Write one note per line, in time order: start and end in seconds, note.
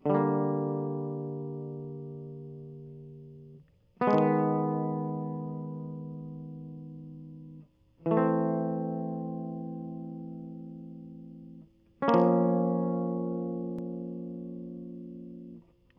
0.07 3.65 D3
0.07 3.62 G3
0.15 3.60 A#3
4.02 7.64 B3
4.08 7.67 G#3
4.15 7.65 D#3
8.07 11.67 E3
8.12 11.66 A3
8.18 11.65 C4
12.03 15.59 C#4
12.09 15.62 A#3
12.15 15.65 F3